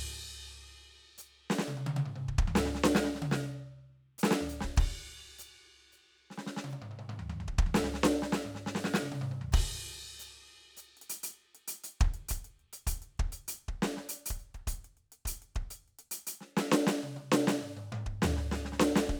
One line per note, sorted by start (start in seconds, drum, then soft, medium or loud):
1.19 hi-hat pedal medium
1.51 snare loud
1.59 snare loud
1.69 high tom loud
1.78 high tom medium
1.87 high tom loud
1.97 high tom loud
2.06 mid tom medium
2.17 mid tom medium
2.29 kick soft
2.48 floor tom loud
2.56 snare loud
2.66 snare medium
2.76 snare medium
2.85 snare loud
2.96 snare loud
3.05 snare medium
3.16 snare soft
3.23 high tom loud
3.32 snare loud
4.19 hi-hat pedal loud
4.24 snare loud
4.32 snare loud
4.42 floor tom medium
4.50 closed hi-hat medium
4.62 kick medium
4.62 snare medium
4.78 kick loud
4.78 crash medium
5.40 hi-hat pedal medium
5.93 hi-hat pedal soft
6.31 snare soft
6.38 snare medium
6.47 snare medium
6.65 high tom medium
6.71 hi-hat pedal soft
6.71 high tom medium
6.83 mid tom medium
6.92 mid tom medium
7.00 mid tom medium
7.10 mid tom loud
7.20 floor tom medium
7.30 floor tom medium
7.41 floor tom medium
7.49 kick medium
7.59 kick loud
7.67 floor tom medium
7.75 snare loud
7.85 snare medium
7.95 snare medium
8.04 snare loud
8.23 snare medium
8.33 snare loud
8.46 mid tom medium
8.56 snare soft
8.67 snare medium
8.76 snare medium
8.85 snare medium
8.95 snare loud
9.03 high tom medium
9.13 high tom loud
9.22 mid tom loud
9.42 floor tom medium
9.53 kick loud
9.53 crash loud
10.20 hi-hat pedal medium
10.78 hi-hat pedal medium
10.98 closed hi-hat soft
11.02 closed hi-hat medium
11.11 closed hi-hat loud
11.24 closed hi-hat loud
11.56 closed hi-hat medium
11.69 closed hi-hat loud
11.85 closed hi-hat medium
12.01 kick loud
12.01 closed hi-hat soft
12.15 closed hi-hat medium
12.29 closed hi-hat loud
12.29 kick medium
12.45 closed hi-hat medium
12.60 closed hi-hat soft
12.74 closed hi-hat medium
12.88 closed hi-hat loud
12.88 kick medium
13.03 closed hi-hat medium
13.19 kick medium
13.19 closed hi-hat soft
13.33 closed hi-hat medium
13.49 closed hi-hat loud
13.69 kick medium
13.83 snare loud
13.98 snare soft
14.10 closed hi-hat loud
14.27 closed hi-hat loud
14.31 kick medium
14.40 closed hi-hat soft
14.55 kick soft
14.55 closed hi-hat soft
14.68 closed hi-hat loud
14.68 kick medium
14.85 closed hi-hat soft
14.98 closed hi-hat soft
15.13 closed hi-hat medium
15.26 closed hi-hat loud
15.26 kick medium
15.43 closed hi-hat soft
15.56 kick medium
15.56 closed hi-hat soft
15.71 closed hi-hat medium
15.89 closed hi-hat soft
16.00 closed hi-hat medium
16.12 closed hi-hat loud
16.28 closed hi-hat loud
16.41 snare soft
16.58 snare loud
16.73 snare loud
16.88 snare loud
17.04 high tom medium
17.17 high tom medium
17.33 snare loud
17.48 snare loud
17.63 mid tom medium
17.78 mid tom medium
17.93 mid tom loud
18.07 kick medium
18.23 snare loud
18.23 floor tom loud
18.38 snare soft
18.52 snare medium
18.66 snare medium
18.73 snare soft
18.80 snare soft
18.80 snare loud
18.96 snare loud
19.10 kick medium